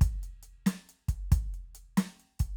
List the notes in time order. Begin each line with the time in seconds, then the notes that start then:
0.01 kick, closed hi-hat
0.23 closed hi-hat
0.43 closed hi-hat
0.66 snare, closed hi-hat
0.89 closed hi-hat
1.08 kick, closed hi-hat
1.32 kick, closed hi-hat
1.54 closed hi-hat
1.75 closed hi-hat
1.97 snare, closed hi-hat
2.20 closed hi-hat
2.39 kick, closed hi-hat